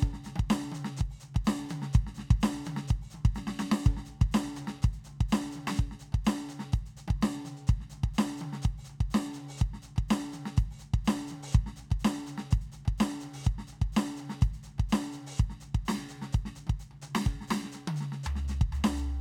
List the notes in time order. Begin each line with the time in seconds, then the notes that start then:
0.01 kick, hi-hat pedal, high tom
0.14 snare
0.25 snare, hi-hat pedal, high tom
0.36 kick, high tom
0.50 snare, hi-hat pedal
0.60 high tom
0.72 hi-hat pedal, high tom
0.85 snare
0.97 hi-hat pedal, high tom
1.02 kick
1.11 open hi-hat
1.21 hi-hat pedal, high tom
1.35 kick, high tom
1.45 snare, hi-hat pedal
1.60 high tom
1.70 hi-hat pedal, high tom
1.83 snare
1.94 kick, hi-hat pedal, high tom
2.08 snare
2.15 snare, hi-hat pedal
2.20 high tom
2.31 kick, high tom
2.41 snare, hi-hat pedal
2.57 high tom
2.65 hi-hat pedal, high tom
2.77 snare
2.88 kick, hi-hat pedal
2.93 high tom
3.02 open hi-hat
3.11 hi-hat pedal
3.15 high tom
3.26 kick
3.35 snare, hi-hat pedal
3.48 snare
3.59 snare, hi-hat pedal
3.72 snare
3.84 kick, hi-hat pedal, high tom
3.97 snare
4.06 hi-hat pedal
4.10 high tom
4.22 kick, high tom
4.32 snare, hi-hat pedal
4.45 high tom
4.56 hi-hat pedal, high tom
4.68 snare
4.83 kick, hi-hat pedal, high tom
4.94 open hi-hat
5.05 hi-hat pedal, high tom
5.21 kick
5.29 snare, hi-hat pedal
5.46 high tom
5.52 hi-hat pedal
5.57 high tom
5.68 snare
5.77 kick, hi-hat pedal, high tom
5.92 snare
6.00 hi-hat pedal, high tom
6.13 kick, high tom
6.25 snare, hi-hat pedal
6.37 high tom
6.49 hi-hat pedal, high tom
6.60 snare
6.73 kick, hi-hat pedal, high tom
6.86 open hi-hat
6.97 hi-hat pedal, high tom
7.08 kick, high tom
7.22 snare, hi-hat pedal
7.34 high tom
7.46 hi-hat pedal, high tom
7.57 open hi-hat
7.68 kick, hi-hat pedal, high tom
7.81 snare
7.91 hi-hat pedal, high tom
8.04 kick, high tom
8.14 hi-hat pedal
8.19 snare
8.30 high tom
8.38 hi-hat pedal, high tom
8.53 snare
8.63 kick, hi-hat pedal
8.67 high tom
8.78 open hi-hat
8.85 hi-hat pedal
8.90 high tom
9.01 kick, high tom
9.11 hi-hat pedal
9.15 snare
9.27 high tom
9.34 hi-hat pedal
9.38 high tom
9.49 open hi-hat
9.58 kick, hi-hat pedal
9.63 high tom
9.74 snare
9.83 hi-hat pedal, high tom
9.97 kick, high tom
10.09 snare, hi-hat pedal
10.22 high tom
10.33 hi-hat pedal, high tom
10.46 snare
10.57 kick, hi-hat pedal
10.61 high tom
10.71 open hi-hat
10.80 hi-hat pedal, high tom
10.94 kick, high tom
11.05 snare, hi-hat pedal
11.21 high tom
11.28 hi-hat pedal, high tom
11.43 open hi-hat
11.53 kick, hi-hat pedal
11.57 high tom
11.67 snare
11.77 hi-hat pedal, high tom
11.91 kick, high tom
12.00 hi-hat pedal
12.05 snare
12.16 high tom
12.27 hi-hat pedal, high tom
12.38 snare
12.51 kick, hi-hat pedal, high tom
12.62 open hi-hat
12.73 hi-hat pedal, high tom
12.86 kick, high tom
12.98 snare, hi-hat pedal
13.12 high tom
13.21 hi-hat pedal, high tom
13.34 open hi-hat
13.44 kick, hi-hat pedal
13.49 high tom
13.59 snare
13.68 hi-hat pedal
13.73 high tom
13.82 kick, high tom
13.93 hi-hat pedal
13.97 snare
14.09 high tom
14.17 hi-hat pedal, high tom
14.30 snare
14.42 kick, hi-hat pedal, high tom
14.54 open hi-hat
14.64 hi-hat pedal
14.68 high tom
14.79 kick, high tom
14.90 snare, hi-hat pedal
15.04 high tom
15.13 hi-hat pedal, high tom
15.27 open hi-hat
15.38 kick, hi-hat pedal, high tom
15.50 snare
15.61 hi-hat pedal, high tom
15.75 kick, high tom
15.86 snare, hi-hat pedal
16.00 high tom
16.09 hi-hat pedal, high tom
16.22 snare
16.33 kick, hi-hat pedal, high tom
16.46 snare
16.56 hi-hat pedal, high tom
16.68 kick, high tom
16.80 open hi-hat, hi-hat pedal
16.92 high tom
17.02 hi-hat pedal, high tom
17.16 snare
17.25 kick, hi-hat pedal, high tom
17.41 snare
17.48 snare, hi-hat pedal
17.65 snare
17.72 snare, hi-hat pedal
17.88 high tom
17.97 hi-hat pedal
18.01 snare
18.13 snare
18.24 floor tom, hi-hat pedal
18.36 snare
18.49 snare, hi-hat pedal
18.62 kick
18.73 floor tom, hi-hat pedal
18.85 snare
18.97 hi-hat pedal